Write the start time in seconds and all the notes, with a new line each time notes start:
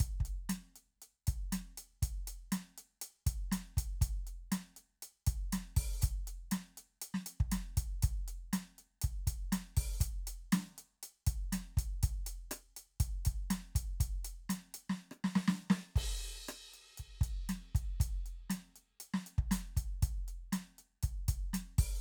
0.02 kick, closed hi-hat
0.20 kick
0.25 closed hi-hat
0.49 snare, closed hi-hat
0.76 closed hi-hat
1.02 closed hi-hat
1.27 kick, closed hi-hat
1.52 snare, closed hi-hat
1.78 closed hi-hat
2.02 kick, closed hi-hat
2.27 closed hi-hat
2.52 snare, closed hi-hat
2.78 closed hi-hat
3.02 closed hi-hat
3.27 kick, closed hi-hat
3.52 snare, closed hi-hat
3.77 kick, closed hi-hat
4.01 kick, closed hi-hat
4.27 closed hi-hat
4.52 snare, closed hi-hat
4.77 closed hi-hat
5.02 closed hi-hat
5.27 kick, closed hi-hat
5.53 snare, closed hi-hat
5.77 kick, open hi-hat
6.02 kick, closed hi-hat, hi-hat pedal
6.27 closed hi-hat
6.51 snare, closed hi-hat
6.77 closed hi-hat
7.02 closed hi-hat
7.14 snare
7.26 closed hi-hat
7.40 kick
7.52 snare, closed hi-hat
7.77 kick, closed hi-hat
8.03 kick, closed hi-hat
8.28 closed hi-hat
8.53 snare, closed hi-hat
8.78 closed hi-hat
9.02 kick, closed hi-hat
9.27 kick, closed hi-hat
9.52 snare, closed hi-hat
9.77 kick, open hi-hat
10.01 kick, closed hi-hat, hi-hat pedal
10.27 closed hi-hat
10.52 snare, closed hi-hat
10.78 closed hi-hat
11.03 closed hi-hat
11.27 kick, closed hi-hat
11.52 snare, closed hi-hat
11.77 kick, closed hi-hat
12.03 kick, closed hi-hat
12.27 closed hi-hat
12.51 cross-stick, closed hi-hat
12.77 closed hi-hat
13.00 kick, closed hi-hat
13.25 kick, closed hi-hat
13.50 snare, closed hi-hat
13.75 kick, closed hi-hat
14.00 kick, closed hi-hat
14.25 closed hi-hat
14.49 snare, closed hi-hat
14.74 closed hi-hat
14.90 snare
15.11 cross-stick
15.24 snare
15.36 snare
15.48 snare
15.70 snare
15.96 kick, crash
16.24 open hi-hat
16.49 cross-stick, closed hi-hat
16.74 closed hi-hat
16.98 kick, closed hi-hat
17.21 kick, closed hi-hat
17.49 snare, closed hi-hat
17.75 kick, closed hi-hat
18.00 kick, closed hi-hat
18.26 closed hi-hat
18.50 snare, closed hi-hat
18.76 closed hi-hat
19.00 closed hi-hat
19.14 snare
19.26 closed hi-hat
19.38 kick
19.51 closed hi-hat, snare
19.77 kick, closed hi-hat
20.02 kick, closed hi-hat
20.28 closed hi-hat
20.52 snare, closed hi-hat
20.78 closed hi-hat
21.03 kick, closed hi-hat
21.28 kick, closed hi-hat
21.53 snare, closed hi-hat
21.78 kick, open hi-hat